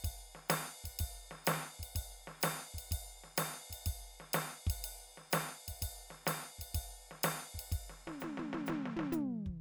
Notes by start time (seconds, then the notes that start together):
0.01 kick, hi-hat pedal, ride
0.35 snare
0.49 snare, hi-hat pedal, ride
0.84 kick, ride
0.99 kick, ride
1.31 snare
1.45 snare, hi-hat pedal, ride
1.54 snare
1.79 kick, ride
1.95 kick, ride
2.27 snare
2.41 snare, hi-hat pedal, ride
2.74 kick
2.78 ride
2.91 kick, ride
3.24 snare
3.37 snare, hi-hat pedal, ride
3.70 kick, ride
3.86 kick, ride
4.20 snare
4.33 snare, hi-hat pedal, ride
4.67 kick, ride
4.81 hi-hat pedal, ride
5.17 snare
5.31 snare, hi-hat pedal, ride
5.68 kick, ride
5.78 hi-hat pedal
5.82 kick, ride
6.10 snare
6.26 snare, hi-hat pedal, ride
6.59 kick, ride
6.74 kick, ride
7.11 snare
7.23 snare, hi-hat pedal, ride
7.54 kick
7.59 ride
7.72 kick, ride
7.90 snare
8.06 snare, floor tom
8.20 snare, floor tom, hi-hat pedal
8.37 snare, floor tom
8.53 snare, floor tom
8.66 snare, floor tom, hi-hat pedal
8.86 snare
8.96 snare, floor tom
9.11 floor tom, hi-hat pedal
9.46 kick